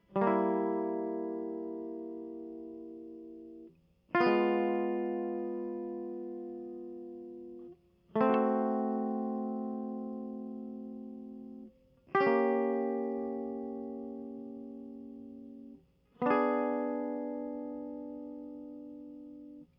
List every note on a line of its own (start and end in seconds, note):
0.17 3.75 G3
0.23 3.71 A#3
0.28 3.71 E4
4.16 7.77 F4
4.21 7.71 B3
4.27 7.71 G#3
8.17 11.72 A3
8.22 11.69 C4
12.16 15.81 G4
12.21 15.81 C#4
12.28 15.80 A#3
16.23 19.67 B3
16.23 19.66 D4
16.31 18.90 G#4